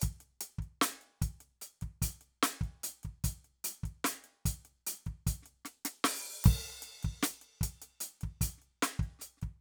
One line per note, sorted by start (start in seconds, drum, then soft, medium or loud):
0.01 kick medium
0.01 closed hi-hat loud
0.01 hi-hat pedal medium
0.20 closed hi-hat soft
0.41 closed hi-hat loud
0.59 kick soft
0.59 closed hi-hat soft
0.82 closed hi-hat loud
0.82 snare loud
1.01 closed hi-hat soft
1.22 kick medium
1.22 closed hi-hat medium
1.41 closed hi-hat soft
1.62 closed hi-hat medium
1.81 kick soft
1.81 closed hi-hat soft
2.02 closed hi-hat loud
2.02 kick medium
2.21 closed hi-hat soft
2.43 closed hi-hat loud
2.43 snare loud
2.61 kick medium
2.61 closed hi-hat soft
2.83 closed hi-hat loud
3.03 kick soft
3.03 closed hi-hat soft
3.24 closed hi-hat loud
3.24 kick medium
3.45 closed hi-hat soft
3.64 closed hi-hat loud
3.83 kick soft
3.83 closed hi-hat soft
4.04 closed hi-hat loud
4.04 snare loud
4.24 closed hi-hat soft
4.46 closed hi-hat loud
4.46 kick medium
4.65 closed hi-hat soft
4.87 closed hi-hat loud
5.06 kick soft
5.06 closed hi-hat soft
5.27 closed hi-hat loud
5.27 kick medium
5.43 snare soft
5.43 closed hi-hat soft
5.65 snare medium
5.65 closed hi-hat medium
5.85 snare medium
5.85 closed hi-hat loud
6.04 open hi-hat loud
6.04 snare loud
6.44 kick loud
6.44 hi-hat pedal medium
6.44 crash loud
6.62 closed hi-hat soft
6.82 closed hi-hat medium
7.03 kick medium
7.03 closed hi-hat soft
7.23 closed hi-hat loud
7.23 snare loud
7.42 closed hi-hat soft
7.61 kick medium
7.61 closed hi-hat loud
7.82 closed hi-hat medium
8.01 closed hi-hat loud
8.21 kick soft
8.21 closed hi-hat soft
8.41 closed hi-hat loud
8.41 kick medium
8.58 snare soft
8.62 closed hi-hat soft
8.83 closed hi-hat loud
8.83 snare loud
8.99 kick medium
8.99 closed hi-hat soft
9.19 closed hi-hat medium
9.19 snare soft
9.37 snare soft
9.42 kick soft
9.42 closed hi-hat soft